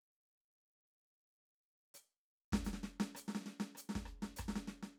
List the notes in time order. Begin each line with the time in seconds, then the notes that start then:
1.94 hi-hat pedal
2.52 kick, snare
2.59 kick
2.64 snare, hi-hat pedal
2.73 snare
3.00 snare
3.15 cross-stick, hi-hat pedal
3.28 snare
3.35 snare
3.41 snare
3.46 snare
3.60 snare
3.75 cross-stick, hi-hat pedal
3.89 snare
3.95 kick, snare
4.05 cross-stick
4.22 kick, snare
4.36 kick, cross-stick, hi-hat pedal
4.48 snare
4.55 snare
4.67 snare
4.83 snare